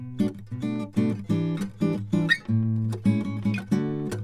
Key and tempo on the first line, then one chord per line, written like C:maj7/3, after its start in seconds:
F# minor, 187 BPM
0.00 B:min7
1.28 E:7(#9,*5)/3
2.57 A:maj7(11)
3.85 D:maj7/5